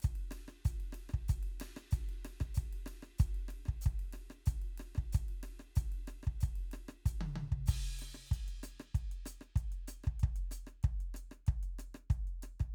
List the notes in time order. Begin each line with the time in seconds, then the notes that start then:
0.01 kick, hi-hat pedal, ride
0.16 ride
0.32 cross-stick, ride
0.49 cross-stick
0.66 kick, hi-hat pedal, ride
0.81 ride
0.93 cross-stick, ride
1.10 cross-stick
1.14 kick
1.29 kick, hi-hat pedal, ride
1.44 ride
1.61 cross-stick, ride
1.77 cross-stick
1.92 kick, hi-hat pedal, ride
2.10 ride
2.25 cross-stick, ride
2.41 kick, cross-stick
2.55 kick, hi-hat pedal, ride
2.74 ride
2.87 cross-stick, ride
3.03 cross-stick
3.19 kick, hi-hat pedal, ride
3.35 ride
3.49 cross-stick, ride
3.66 kick, cross-stick
3.82 hi-hat pedal, ride
3.87 kick
4.00 ride
4.13 cross-stick, ride
4.31 cross-stick
4.46 kick, hi-hat pedal, ride
4.63 ride
4.78 cross-stick, ride
4.96 kick, cross-stick
5.13 kick, hi-hat pedal, ride
5.29 ride
5.44 cross-stick, ride
5.60 cross-stick
5.76 kick, hi-hat pedal, ride
5.93 ride
6.08 cross-stick, ride
6.24 kick, cross-stick
6.41 kick, hi-hat pedal, ride
6.56 ride
6.72 cross-stick, ride
6.89 cross-stick
7.06 kick, hi-hat pedal, ride
7.22 high tom
7.36 high tom
7.53 kick
7.67 closed hi-hat, kick, hi-hat pedal, crash
8.00 cross-stick, open hi-hat
8.15 cross-stick
8.27 hi-hat pedal
8.32 kick, closed hi-hat
8.49 closed hi-hat
8.64 closed hi-hat, cross-stick
8.80 cross-stick
8.95 kick, closed hi-hat
9.12 closed hi-hat
9.26 closed hi-hat, cross-stick
9.42 cross-stick
9.56 kick, closed hi-hat
9.73 closed hi-hat
9.88 closed hi-hat, cross-stick
10.04 kick, cross-stick
10.20 kick, closed hi-hat
10.37 closed hi-hat
10.52 closed hi-hat, cross-stick
10.68 cross-stick
10.84 kick, closed hi-hat
11.01 closed hi-hat
11.15 cross-stick, closed hi-hat
11.32 cross-stick
11.47 kick, closed hi-hat
11.64 closed hi-hat
11.79 cross-stick, closed hi-hat
11.95 cross-stick
12.11 kick, closed hi-hat
12.28 closed hi-hat
12.43 cross-stick, closed hi-hat
12.60 kick, cross-stick